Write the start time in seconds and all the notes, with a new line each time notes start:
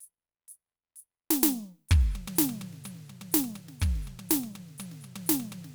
0.01 hi-hat pedal
0.48 hi-hat pedal
0.96 hi-hat pedal
1.30 snare
1.41 snare, hi-hat pedal
1.50 snare
1.89 kick, hi-hat pedal, high tom
2.01 snare
2.10 hi-hat pedal
2.15 high tom
2.27 high tom
2.36 snare, hi-hat pedal
2.49 high tom
2.58 hi-hat pedal, high tom
2.73 snare
2.84 hi-hat pedal, high tom
2.94 snare
3.05 hi-hat pedal
3.09 high tom
3.21 high tom
3.31 snare, hi-hat pedal
3.44 high tom
3.54 hi-hat pedal, high tom
3.68 snare
3.80 kick, hi-hat pedal, high tom
3.95 snare
4.02 hi-hat pedal
4.07 high tom
4.19 high tom
4.29 snare, hi-hat pedal
4.43 high tom
4.52 hi-hat pedal, high tom
4.68 snare
4.78 hi-hat pedal, high tom
4.91 snare
5.01 hi-hat pedal, high tom
5.16 high tom
5.26 snare, hi-hat pedal
5.40 high tom
5.49 hi-hat pedal, high tom
5.64 snare